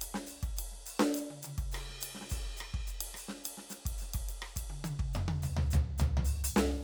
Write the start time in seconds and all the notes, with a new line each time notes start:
0.01 hi-hat pedal, ride
0.14 snare
0.27 hi-hat pedal, ride
0.43 kick, ride
0.57 hi-hat pedal, ride
0.72 snare
0.86 hi-hat pedal, ride
1.00 snare, ride
1.14 hi-hat pedal, ride
1.30 high tom
1.42 hi-hat pedal, high tom, ride
1.58 kick, ride
1.72 cross-stick, hi-hat pedal, ride
1.89 snare
2.01 hi-hat pedal, ride
2.15 snare
2.21 snare
2.29 kick, hi-hat pedal, ride
2.57 cross-stick, hi-hat pedal
2.74 kick
2.78 snare
2.87 hi-hat pedal
3.01 ride
3.14 cross-stick, hi-hat pedal
3.28 snare
3.44 hi-hat pedal, ride
3.57 snare
3.70 snare, hi-hat pedal, ride
3.85 kick, ride
3.98 snare, hi-hat pedal
4.14 kick, ride
4.29 hi-hat pedal, ride
4.42 cross-stick
4.56 kick, hi-hat pedal, ride
4.70 high tom
4.84 hi-hat pedal, high tom
4.99 kick
5.13 hi-hat pedal, mid tom
5.28 open hi-hat, high tom
5.42 floor tom, hi-hat pedal
5.57 floor tom
5.71 floor tom, hi-hat pedal
5.98 floor tom, hi-hat pedal
6.17 floor tom
6.25 hi-hat pedal
6.44 open hi-hat
6.56 snare